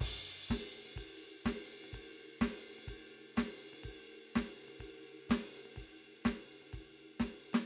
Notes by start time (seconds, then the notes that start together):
0.01 kick, ride
0.49 kick, snare, hi-hat pedal, ride
0.86 ride
0.97 kick, ride
1.45 kick, snare, hi-hat pedal, ride
1.85 ride
1.94 kick, ride
2.42 kick, snare, hi-hat pedal, ride
2.79 ride
2.88 kick, ride
3.37 kick, snare, hi-hat pedal, ride
3.74 ride
3.84 kick, ride
4.36 kick, snare, hi-hat pedal, ride
4.69 ride
4.80 kick, ride
5.29 kick, snare, hi-hat pedal, ride
5.66 ride
5.77 kick, ride
6.25 kick, snare, hi-hat pedal, ride
6.62 ride
6.74 kick, ride
7.20 kick, snare, hi-hat pedal, ride
7.54 snare, ride